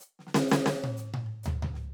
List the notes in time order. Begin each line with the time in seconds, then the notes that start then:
0.00 hi-hat pedal
0.19 snare
0.27 snare
0.34 snare
0.48 snare, hi-hat pedal
0.66 snare
0.84 high tom
0.97 snare, hi-hat pedal
1.14 high tom
1.26 cross-stick
1.43 floor tom, hi-hat pedal
1.62 floor tom
1.74 snare